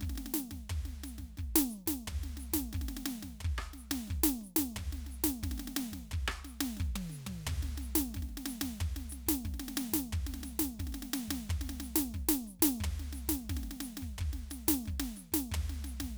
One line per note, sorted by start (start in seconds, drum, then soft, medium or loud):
0.01 kick soft
0.01 snare soft
0.10 snare soft
0.16 snare soft
0.18 snare soft
0.26 snare soft
0.34 snare medium
0.34 hi-hat pedal medium
0.51 kick soft
0.51 snare soft
0.70 kick soft
0.70 floor tom medium
0.85 snare soft
1.04 snare soft
1.04 hi-hat pedal medium
1.18 kick soft
1.18 snare soft
1.37 kick soft
1.37 snare soft
1.56 snare loud
1.70 snare soft
1.70 hi-hat pedal medium
1.87 kick soft
1.87 snare medium
2.07 kick soft
2.07 floor tom medium
2.24 snare soft
2.37 snare soft
2.37 hi-hat pedal medium
2.53 kick soft
2.53 snare medium
2.73 kick soft
2.73 snare soft
2.81 snare soft
2.89 snare soft
2.97 snare soft
3.06 snare medium
3.06 hi-hat pedal soft
3.23 kick soft
3.23 snare soft
3.41 floor tom medium
3.45 kick soft
3.58 cross-stick medium
3.74 snare soft
3.78 hi-hat pedal soft
3.90 kick soft
3.90 snare medium
4.08 kick soft
4.08 snare soft
4.24 snare medium
4.41 snare soft
4.41 hi-hat pedal soft
4.56 kick soft
4.56 snare medium
4.76 kick soft
4.76 floor tom medium
4.93 snare soft
5.07 snare soft
5.11 hi-hat pedal soft
5.24 kick soft
5.24 snare medium
5.43 kick soft
5.43 snare soft
5.51 snare soft
5.58 snare soft
5.60 snare soft
5.68 snare soft
5.77 snare medium
5.77 hi-hat pedal soft
5.92 kick soft
5.92 snare soft
6.11 kick soft
6.11 floor tom medium
6.28 cross-stick loud
6.45 snare soft
6.45 hi-hat pedal soft
6.60 kick soft
6.60 snare medium
6.77 kick soft
6.77 snare soft
6.96 high tom medium
7.10 snare soft
7.10 hi-hat pedal medium
7.27 kick soft
7.27 high tom medium
7.47 kick soft
7.47 floor tom loud
7.63 snare soft
7.78 snare soft
7.82 hi-hat pedal soft
7.96 kick soft
7.96 snare medium
8.14 kick soft
8.14 snare soft
8.22 snare soft
8.29 snare soft
8.37 snare soft
8.46 snare medium
8.46 hi-hat pedal medium
8.61 kick soft
8.61 snare medium
8.80 kick soft
8.80 floor tom medium
8.96 snare soft
9.10 snare soft
9.10 hi-hat pedal medium
9.27 kick soft
9.27 snare medium
9.45 kick soft
9.45 snare soft
9.54 snare soft
9.60 snare medium
9.68 snare soft
9.77 snare medium
9.77 hi-hat pedal medium
9.92 kick soft
9.92 snare medium
10.13 kick soft
10.13 floor tom medium
10.27 snare soft
10.34 snare soft
10.41 snare soft
10.43 snare soft
10.43 hi-hat pedal medium
10.59 kick soft
10.59 snare medium
10.80 kick soft
10.80 snare soft
10.87 snare soft
10.93 snare soft
10.94 snare soft
11.03 snare soft
11.14 snare medium
11.14 hi-hat pedal medium
11.28 kick soft
11.28 snare medium
11.50 kick soft
11.50 floor tom medium
11.61 snare soft
11.69 snare soft
11.80 snare medium
11.80 hi-hat pedal medium
11.96 kick soft
11.96 snare medium
12.14 kick soft
12.14 snare soft
12.29 snare medium
12.47 snare soft
12.47 hi-hat pedal medium
12.60 kick soft
12.60 snare loud
12.80 kick soft
12.80 floor tom medium
13.00 snare soft
13.13 snare soft
13.13 hi-hat pedal medium
13.28 kick soft
13.28 snare medium
13.50 kick soft
13.50 snare soft
13.57 snare soft
13.63 snare soft
13.71 snare soft
13.81 snare medium
13.81 hi-hat pedal medium
13.97 snare medium
14.02 kick soft
14.18 kick soft
14.18 floor tom medium
14.33 snare soft
14.51 snare soft
14.51 hi-hat pedal medium
14.68 kick soft
14.68 snare medium
14.86 kick soft
14.86 snare soft
15.00 snare medium
15.16 snare soft
15.16 hi-hat pedal medium
15.32 kick soft
15.32 snare medium
15.52 kick soft
15.52 floor tom loud
15.70 snare soft
15.84 snare soft
15.84 hi-hat pedal medium
16.00 kick soft
16.00 snare medium